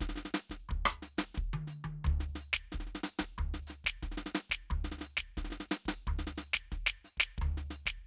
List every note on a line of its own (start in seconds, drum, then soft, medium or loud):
0.01 kick soft
0.01 snare soft
0.09 snare soft
0.16 snare soft
0.18 snare soft
0.25 snare soft
0.34 snare medium
0.34 hi-hat pedal soft
0.50 kick soft
0.50 snare soft
0.69 kick soft
0.69 floor tom medium
0.86 cross-stick loud
1.03 snare soft
1.03 hi-hat pedal soft
1.18 kick soft
1.18 snare medium
1.35 kick soft
1.35 snare soft
1.54 high tom medium
1.68 snare soft
1.68 hi-hat pedal medium
1.85 kick soft
1.85 high tom medium
2.05 kick soft
2.05 floor tom loud
2.21 snare soft
2.36 snare soft
2.40 hi-hat pedal soft
2.53 kick soft
2.53 snare medium
2.72 kick soft
2.72 snare soft
2.80 snare soft
2.87 snare soft
2.95 snare soft
3.04 snare medium
3.04 hi-hat pedal medium
3.19 kick soft
3.19 snare medium
3.38 kick soft
3.38 floor tom medium
3.54 snare soft
3.67 snare soft
3.67 hi-hat pedal medium
3.85 kick soft
3.85 snare medium
4.03 kick soft
4.03 snare soft
4.12 snare soft
4.18 snare medium
4.26 snare soft
4.35 snare medium
4.35 hi-hat pedal medium
4.50 kick soft
4.50 snare medium
4.71 kick soft
4.71 floor tom medium
4.85 snare soft
4.92 snare soft
4.99 snare soft
5.01 snare soft
5.01 hi-hat pedal medium
5.17 kick soft
5.17 snare medium
5.37 kick soft
5.37 snare soft
5.45 snare soft
5.50 snare soft
5.52 snare soft
5.60 snare soft
5.71 snare medium
5.71 hi-hat pedal medium
5.86 kick soft
5.86 snare medium
6.07 kick soft
6.07 floor tom medium
6.19 snare soft
6.27 snare soft
6.38 snare medium
6.38 hi-hat pedal medium
6.54 kick soft
6.54 snare medium
6.72 kick soft
6.72 snare soft
6.87 snare medium
7.05 snare soft
7.05 hi-hat pedal medium
7.18 kick soft
7.18 snare loud
7.38 kick soft
7.38 floor tom medium
7.58 snare soft
7.71 snare soft
7.71 hi-hat pedal medium
7.86 kick soft
7.86 snare medium